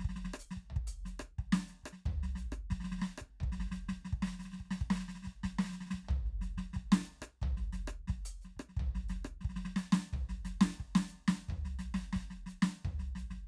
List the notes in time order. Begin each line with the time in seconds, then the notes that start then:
0.01 snare
0.05 kick
0.10 snare
0.17 snare
0.25 snare
0.34 cross-stick
0.40 hi-hat pedal
0.52 snare
0.57 kick
0.71 floor tom
0.77 kick
0.88 closed hi-hat
1.06 snare, hi-hat pedal
1.20 kick, cross-stick
1.39 kick, snare
1.53 snare
1.59 snare
1.68 snare, hi-hat pedal
1.84 kick, cross-stick
1.93 snare
2.06 kick, floor tom
2.24 snare
2.36 snare, hi-hat pedal
2.52 kick, cross-stick
2.71 kick, snare
2.81 snare
2.85 snare
2.92 snare
2.99 snare
3.02 snare, hi-hat pedal
3.19 kick, cross-stick
3.41 kick, floor tom
3.53 snare
3.61 snare
3.68 snare
3.72 snare, hi-hat pedal
3.89 kick, snare
4.05 snare
4.13 kick
4.23 snare
4.27 snare
4.33 snare
4.40 snare, hi-hat pedal
4.46 snare
4.52 snare
4.54 snare
4.59 kick, snare
4.66 snare
4.71 snare
4.82 kick
4.91 snare
4.96 snare
5.01 snare
5.09 snare, hi-hat pedal
5.16 snare
5.23 snare
5.25 kick, snare
5.31 snare
5.38 snare
5.44 kick, snare
5.59 snare
5.65 snare
5.70 snare, hi-hat pedal
5.74 snare
5.81 snare
5.87 snare
5.94 kick, snare
6.05 snare
6.09 kick, floor tom
6.26 snare
6.42 snare, hi-hat pedal
6.58 kick, snare
6.74 kick, snare
6.93 snare
7.05 snare, hi-hat pedal
7.22 kick, cross-stick
7.42 kick, floor tom
7.58 snare
7.73 snare, hi-hat pedal
7.88 kick, cross-stick
8.08 kick, snare
8.26 closed hi-hat
8.42 snare, hi-hat pedal
8.57 kick, cross-stick
8.70 snare
8.77 kick, floor tom
8.96 snare
9.09 snare, hi-hat pedal
9.25 kick, cross-stick
9.42 kick, snare
9.50 snare
9.57 snare
9.66 snare
9.77 snare, hi-hat pedal
9.93 kick, snare
10.13 kick, floor tom
10.30 snare
10.46 snare, hi-hat pedal
10.61 kick, snare
10.80 kick, snare
10.96 snare
11.09 hi-hat pedal
11.13 snare
11.29 kick, snare
11.35 snare
11.49 kick, floor tom
11.66 snare
11.80 snare, hi-hat pedal
11.95 kick, snare
12.13 kick, snare
12.31 snare
12.47 snare, hi-hat pedal
12.63 kick, snare
12.85 kick, floor tom
13.00 snare
13.16 snare, hi-hat pedal
13.31 kick, snare